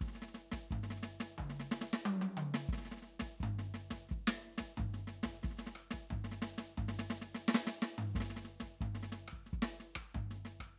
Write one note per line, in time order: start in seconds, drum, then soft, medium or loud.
0.01 kick soft
0.01 snare soft
0.08 snare soft
0.13 snare soft
0.15 snare soft
0.22 snare soft
0.28 snare soft
0.34 snare soft
0.34 hi-hat pedal medium
0.51 kick soft
0.51 snare medium
0.71 kick soft
0.71 floor tom medium
0.83 snare soft
0.90 snare soft
0.97 snare soft
1.02 snare medium
1.02 hi-hat pedal soft
1.20 snare medium
1.38 kick soft
1.38 mid tom medium
1.50 snare soft
1.71 snare medium
1.81 snare medium
1.93 snare medium
2.05 high tom loud
2.21 high tom medium
2.37 mid tom medium
2.54 snare medium
2.69 kick medium
2.69 snare soft
2.78 snare soft
2.82 snare soft
2.85 snare soft
2.91 snare soft
2.97 snare soft
3.02 snare soft
3.19 kick soft
3.19 snare medium
3.40 kick soft
3.40 floor tom loud
3.59 snare soft
3.74 snare soft
3.74 hi-hat pedal soft
3.90 kick soft
3.90 snare medium
4.09 kick soft
4.09 snare soft
4.27 snare loud
4.42 snare soft
4.42 hi-hat pedal soft
4.58 kick soft
4.58 snare medium
4.77 kick soft
4.77 floor tom medium
4.94 snare soft
5.07 snare soft
5.13 hi-hat pedal medium
5.23 kick soft
5.23 snare medium
5.43 kick soft
5.43 snare soft
5.51 snare soft
5.57 snare soft
5.58 snare medium
5.66 snare soft
5.75 cross-stick medium
5.75 hi-hat pedal medium
5.91 kick soft
5.91 snare medium
6.10 kick soft
6.10 floor tom medium
6.24 snare soft
6.31 snare soft
6.42 snare medium
6.42 hi-hat pedal medium
6.58 snare medium
6.77 kick soft
6.77 floor tom medium
6.88 snare medium
6.99 snare medium
7.10 snare medium
7.21 snare soft
7.34 snare medium
7.48 snare loud
7.54 snare loud
7.67 snare medium
7.82 snare medium
7.98 floor tom medium
8.05 cross-stick soft
8.15 kick soft
8.15 snare medium
8.20 snare medium
8.24 snare soft
8.30 snare soft
8.36 snare soft
8.44 snare soft
8.60 kick soft
8.60 snare medium
8.81 kick soft
8.81 floor tom medium
8.95 snare soft
9.03 snare soft
9.12 snare medium
9.12 hi-hat pedal soft
9.28 cross-stick medium
9.33 kick soft
9.46 snare soft
9.53 kick soft
9.62 snare medium
9.80 snare soft
9.80 hi-hat pedal medium
9.95 kick soft
9.95 cross-stick medium
10.14 kick soft
10.14 floor tom medium
10.30 snare soft
10.45 snare soft
10.45 hi-hat pedal soft
10.60 kick soft
10.60 cross-stick medium